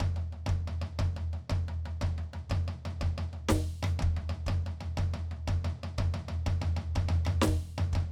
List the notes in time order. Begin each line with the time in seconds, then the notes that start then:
0.00 kick, floor tom
0.16 floor tom
0.32 floor tom
0.46 kick, floor tom
0.67 floor tom
0.81 floor tom
0.99 kick, floor tom
1.16 floor tom
1.33 floor tom
1.49 kick, floor tom
1.68 floor tom
1.85 floor tom
2.01 kick, floor tom
2.18 floor tom
2.33 floor tom
2.49 kick, floor tom
2.68 floor tom
2.85 floor tom
3.01 kick, floor tom
3.18 floor tom
3.33 floor tom
3.48 kick, snare, floor tom
3.82 cross-stick, floor tom
3.99 kick, floor tom
4.16 floor tom
4.29 floor tom
4.46 kick, floor tom
4.66 floor tom
4.80 floor tom
4.97 kick, floor tom
5.14 floor tom
5.31 floor tom
5.47 kick, floor tom
5.64 floor tom
5.83 floor tom
5.98 kick, floor tom
6.14 floor tom
6.28 floor tom
6.46 kick, floor tom
6.61 floor tom
6.76 floor tom
6.95 kick, floor tom
7.08 floor tom
7.25 cross-stick, floor tom
7.41 snare, floor tom
7.47 kick
7.78 floor tom
7.93 kick, floor tom